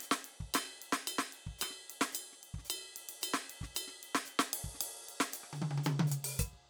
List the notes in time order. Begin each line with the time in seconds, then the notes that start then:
0.01 hi-hat pedal, ride
0.12 snare
0.25 ride
0.41 kick
0.54 snare, hi-hat pedal, ride bell
0.82 ride
0.93 snare
1.08 hi-hat pedal, ride bell
1.19 snare
1.33 ride
1.47 kick
1.59 cross-stick, hi-hat pedal, ride bell
1.71 snare
1.90 ride
2.02 snare
2.13 hi-hat pedal, ride bell
2.33 snare
2.44 ride
2.54 kick
2.59 snare
2.65 snare, hi-hat pedal
2.70 ride bell
2.97 ride
3.09 ride
3.22 hi-hat pedal, ride bell
3.34 snare
3.50 ride
3.62 kick, snare
3.75 hi-hat pedal, ride bell
3.88 snare
4.03 ride
4.15 snare
4.26 hi-hat pedal, ride
4.40 snare
4.54 ride
4.65 kick
4.75 snare
4.81 hi-hat pedal, ride
5.09 ride
5.21 snare
5.33 hi-hat pedal, ride
5.44 cross-stick
5.53 hi-hat pedal, high tom
5.62 high tom
5.71 high tom
5.78 high tom
5.84 hi-hat pedal, high tom
6.00 high tom
6.08 hi-hat pedal
6.12 closed hi-hat
6.25 closed hi-hat
6.39 kick, hi-hat pedal, percussion
6.53 kick